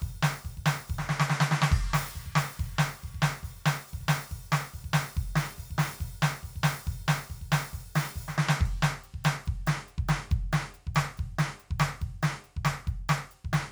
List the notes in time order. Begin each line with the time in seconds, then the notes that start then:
0.01 open hi-hat, kick, snare
0.23 open hi-hat, snare
0.44 open hi-hat, kick, snare
0.57 kick
0.66 open hi-hat, snare
0.88 open hi-hat, kick
0.98 snare
1.09 snare
1.20 snare
1.30 snare
1.40 snare
1.51 snare
1.62 snare
1.72 kick, crash
1.93 open hi-hat, snare
2.16 open hi-hat, kick, snare
2.26 kick
2.35 open hi-hat, snare
2.56 open hi-hat, kick, snare
2.78 open hi-hat, snare
3.00 open hi-hat, kick, snare
3.14 kick
3.22 open hi-hat, snare
3.43 open hi-hat, kick, snare
3.66 open hi-hat, snare
3.88 open hi-hat, snare
3.93 kick
4.01 kick
4.08 open hi-hat, snare
4.31 open hi-hat, kick
4.52 open hi-hat, snare
4.74 open hi-hat, kick
4.84 kick
4.93 open hi-hat, snare
5.15 open hi-hat, kick, snare
5.36 open hi-hat, snare
5.57 open hi-hat, kick, snare
5.71 kick
5.78 open hi-hat, snare
5.98 open hi-hat, kick, snare
6.22 open hi-hat, snare
6.43 open hi-hat, kick
6.56 kick
6.63 open hi-hat, snare
6.85 open hi-hat, kick, snare
7.08 open hi-hat, snare
7.30 open hi-hat, kick, snare
7.41 kick
7.52 open hi-hat, snare
7.72 open hi-hat, kick, snare
7.95 open hi-hat, snare
8.10 snare
8.16 open hi-hat, kick
8.28 snare
8.34 hi-hat pedal
8.38 snare
8.49 snare
8.56 snare
8.61 kick
8.66 crash
8.82 closed hi-hat, snare
9.04 closed hi-hat
9.14 kick
9.24 closed hi-hat, snare
9.45 closed hi-hat, kick, snare
9.67 closed hi-hat, snare
9.86 closed hi-hat, snare
9.98 kick
10.08 closed hi-hat, snare
10.29 closed hi-hat, kick, snare
10.53 closed hi-hat, snare
10.67 snare
10.74 closed hi-hat
10.87 kick
10.95 closed hi-hat, snare
11.17 closed hi-hat, kick, snare
11.39 closed hi-hat, snare
11.58 closed hi-hat, snare
11.71 kick
11.79 closed hi-hat, snare
11.99 closed hi-hat, kick, snare
12.23 closed hi-hat, snare
12.41 closed hi-hat, snare
12.56 kick
12.65 closed hi-hat, snare
12.84 closed hi-hat, kick, snare
13.09 closed hi-hat, snare
13.31 closed hi-hat
13.45 kick
13.53 closed hi-hat, snare